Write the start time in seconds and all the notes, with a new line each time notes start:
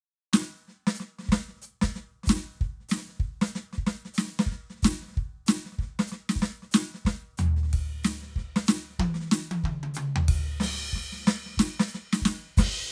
0.33 snare, hi-hat pedal
0.42 snare
0.53 snare
0.59 snare
0.65 snare
0.68 snare
0.87 snare
0.95 hi-hat pedal
1.00 snare
1.19 snare
1.23 snare
1.26 snare
1.29 kick, snare
1.33 snare
1.49 snare
1.53 snare
1.56 snare
1.62 snare, hi-hat pedal
1.82 kick, snare
1.96 snare
2.24 kick, snare, hi-hat pedal
2.28 snare
2.36 snare
2.48 snare
2.51 snare
2.55 snare
2.61 kick, snare
2.81 snare
2.89 snare, hi-hat pedal
2.98 snare
3.09 snare
3.14 snare
3.17 snare
3.20 kick, snare
3.22 snare
3.42 snare
3.46 hi-hat pedal
3.56 snare
3.73 snare
3.78 kick
3.87 snare
4.06 snare
4.14 hi-hat pedal
4.19 snare
4.28 snare
4.40 snare
4.47 kick
4.52 snare
4.70 snare
4.76 snare
4.79 snare
4.82 kick, snare, hi-hat pedal
4.85 snare
5.02 snare
5.08 snare
5.12 snare
5.17 kick, snare
5.47 snare, hi-hat pedal
5.66 snare
5.73 snare
5.78 kick, snare
5.81 snare
6.00 snare
6.08 hi-hat pedal
6.12 snare
6.30 snare
6.36 kick
6.43 snare
6.63 snare
6.72 snare, hi-hat pedal
6.95 snare
7.06 kick, snare
7.38 floor tom, hi-hat pedal
7.57 snare
7.64 snare
7.68 snare
7.72 kick, snare, ride
8.04 snare, hi-hat pedal
8.23 snare
8.28 snare
8.32 snare
8.36 kick
8.56 snare
8.67 snare, hi-hat pedal
8.91 snare
9.00 kick, high tom
9.15 snare
9.21 snare
9.26 snare
9.32 snare, hi-hat pedal
9.52 high tom
9.64 kick, mid tom
9.84 mid tom
9.94 hi-hat pedal, mid tom
10.16 floor tom
10.29 kick, ride
10.61 snare, hi-hat pedal, crash
10.64 snare
10.67 snare
10.75 snare
10.78 snare
10.81 snare
10.85 snare
10.93 kick, snare
11.13 snare
11.18 snare
11.21 snare
11.25 snare, hi-hat pedal
11.46 snare
11.51 snare
11.54 snare
11.57 kick, snare
11.60 snare
11.80 snare
11.88 hi-hat pedal
11.95 snare
12.13 snare
12.22 kick, snare
12.58 kick, snare, hi-hat pedal, ride